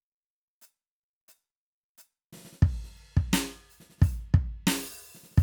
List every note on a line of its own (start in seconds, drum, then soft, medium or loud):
0.62 hi-hat pedal medium
1.28 hi-hat pedal medium
1.98 hi-hat pedal medium
2.33 snare medium
2.37 snare soft
2.41 snare soft
2.45 snare medium
2.53 snare soft
2.62 kick loud
2.62 crash medium
2.84 snare soft
2.96 open hi-hat soft
3.17 kick loud
3.33 closed hi-hat loud
3.33 snare loud
3.56 snare soft
3.69 open hi-hat soft
3.80 snare soft
3.90 snare soft
3.98 open hi-hat medium
3.98 kick loud
3.98 snare soft
4.06 snare soft
4.12 snare soft
4.19 snare soft
4.34 kick loud
4.67 open hi-hat loud
4.67 snare loud
5.04 open hi-hat soft
5.15 snare soft
5.23 snare soft
5.31 snare soft
5.36 open hi-hat medium
5.36 kick loud
5.36 snare soft